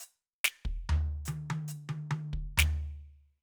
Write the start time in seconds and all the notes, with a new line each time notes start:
0.00 hi-hat pedal
0.44 snare
0.65 kick
0.89 floor tom
1.25 hi-hat pedal, high tom
1.50 high tom
1.68 hi-hat pedal
1.89 high tom
2.11 high tom
2.33 kick
2.57 snare, floor tom